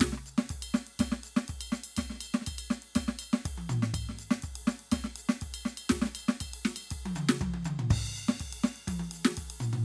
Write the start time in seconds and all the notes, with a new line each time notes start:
0.01 kick, snare, ride, percussion
0.13 snare
0.18 cross-stick
0.27 percussion
0.39 snare
0.50 kick, ride, percussion
0.63 ride bell
0.75 snare, percussion
0.87 ride
1.00 kick, snare, ride bell, percussion
1.12 snare
1.24 ride, percussion
1.37 snare
1.49 kick, ride, percussion
1.61 ride bell
1.73 snare, percussion
1.84 ride bell
1.97 kick, snare, ride bell, percussion
2.11 snare
2.15 snare
2.21 ride bell, percussion
2.35 snare
2.42 snare
2.47 kick, ride bell, percussion
2.59 ride bell
2.71 snare, percussion
2.83 ride
2.96 kick, snare, ride bell, percussion
3.09 snare
3.20 ride bell, percussion
3.34 snare
3.46 kick, ride, percussion
3.58 high tom
3.70 floor tom, percussion
3.83 snare
3.94 kick, ride bell, percussion
4.10 snare
4.14 snare
4.17 snare, ride, percussion
4.32 snare
4.43 kick, ride, percussion
4.56 ride
4.68 snare, percussion
4.80 ride
4.92 kick, snare, ride bell, percussion
5.05 snare
5.16 ride, percussion
5.30 snare
5.42 kick, ride, percussion
5.55 ride bell
5.66 snare, percussion
5.78 ride bell
5.90 kick, snare, ride, percussion
6.02 snare
6.06 snare
6.16 ride bell, percussion
6.29 snare
6.41 kick, ride bell, percussion
6.54 ride
6.66 snare, percussion
6.77 ride bell
6.91 kick, ride, percussion
7.06 high tom
7.13 kick, mid tom, percussion
7.30 snare
7.40 kick, high tom, percussion
7.55 high tom
7.64 kick, mid tom, percussion
7.80 floor tom
7.91 kick, crash, percussion
8.16 ride, percussion
8.29 snare
8.40 kick, ride, percussion
8.53 ride
8.64 snare, percussion
8.77 ride
8.88 kick, high tom, ride, percussion
9.00 high tom
9.12 ride, percussion
9.26 snare
9.38 kick, ride, percussion
9.51 ride
9.61 floor tom, percussion
9.74 floor tom